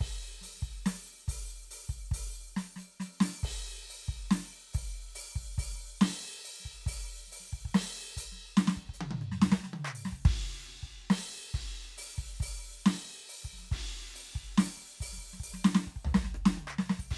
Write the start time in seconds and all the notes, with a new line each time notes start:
0.01 kick, crash
0.22 open hi-hat
0.42 open hi-hat, snare
0.49 snare
0.54 snare
0.58 snare
0.60 kick, snare
0.65 open hi-hat
0.87 open hi-hat, snare
1.06 open hi-hat
1.29 open hi-hat, kick
1.49 open hi-hat
1.72 open hi-hat
1.90 kick, open hi-hat
2.12 open hi-hat, kick
2.36 open hi-hat
2.57 open hi-hat, snare
2.77 open hi-hat, snare
3.01 open hi-hat, snare
3.21 open hi-hat, snare
3.44 kick, crash
3.90 open hi-hat
4.09 kick, open hi-hat
4.32 open hi-hat, snare
4.51 open hi-hat
4.74 open hi-hat, kick, snare
4.96 open hi-hat
5.16 open hi-hat
5.36 kick, open hi-hat
5.59 open hi-hat, kick
5.72 snare
5.76 snare
5.81 open hi-hat
6.02 snare, crash
6.22 open hi-hat
6.45 open hi-hat
6.61 snare
6.66 kick, open hi-hat
6.87 open hi-hat, kick
7.10 open hi-hat
7.28 snare
7.33 open hi-hat
7.41 snare
7.53 kick
7.66 kick
7.70 kick
7.75 snare, crash
8.18 open hi-hat, kick
8.23 hi-hat pedal
8.33 snare
8.58 snare
8.68 snare
8.77 kick
8.90 kick
8.95 hi-hat pedal
9.02 high tom
9.12 high tom
9.22 cross-stick
9.33 snare
9.43 snare
9.53 snare
9.64 snare
9.74 high tom
9.85 percussion
9.96 open hi-hat
10.06 snare
10.13 kick
10.26 kick, ride
10.84 kick
11.11 snare, crash
11.55 kick, ride
11.99 open hi-hat
12.19 kick, open hi-hat
12.41 open hi-hat, kick
12.63 open hi-hat
12.87 snare, crash
13.09 open hi-hat
13.30 open hi-hat
13.44 kick, snare
13.54 snare
13.59 snare
13.63 snare
13.70 kick, snare, ride
14.16 open hi-hat
14.36 kick, open hi-hat
14.59 open hi-hat, snare
14.78 kick, open hi-hat
14.98 kick, snare
15.03 open hi-hat
15.13 snare
15.18 kick
15.23 open hi-hat
15.34 snare
15.41 kick, open hi-hat
15.54 snare
15.65 snare
15.88 kick
15.97 kick
16.06 floor tom
16.11 hi-hat pedal
16.15 snare
16.35 cross-stick
16.46 snare
16.58 high tom
16.68 percussion
16.79 snare
16.90 snare
17.00 kick, open hi-hat
17.12 kick, ride